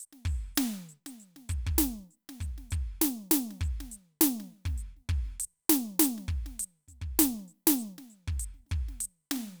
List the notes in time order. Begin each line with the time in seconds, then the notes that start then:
0.00 closed hi-hat
0.12 snare
0.25 open hi-hat, kick
0.55 snare, hi-hat pedal
0.59 closed hi-hat
0.77 snare
0.89 closed hi-hat
1.06 closed hi-hat, snare
1.20 closed hi-hat
1.36 snare
1.49 closed hi-hat, kick
1.67 kick
1.78 open hi-hat, snare, hi-hat pedal
2.10 closed hi-hat
2.29 snare, closed hi-hat
2.40 closed hi-hat, kick
2.58 snare
2.71 closed hi-hat, kick
3.01 closed hi-hat, snare
3.31 closed hi-hat, snare
3.50 snare
3.61 closed hi-hat, kick
3.80 snare
3.91 closed hi-hat
4.21 closed hi-hat, snare
4.40 snare
4.65 kick, snare
4.78 closed hi-hat
4.96 snare
5.09 kick, closed hi-hat
5.25 snare
5.29 snare
5.40 closed hi-hat
5.69 closed hi-hat, snare
5.99 closed hi-hat, snare
6.18 snare
6.28 kick, closed hi-hat
6.46 snare
6.59 closed hi-hat
6.88 closed hi-hat, kick, snare
7.01 kick
7.19 closed hi-hat, snare
7.39 snare
7.48 closed hi-hat
7.67 snare
7.79 closed hi-hat
7.98 snare
8.10 closed hi-hat
8.28 kick
8.32 snare
8.39 closed hi-hat
8.54 snare
8.66 snare, closed hi-hat
8.71 kick
8.88 snare
9.00 closed hi-hat
9.31 closed hi-hat, snare
9.36 snare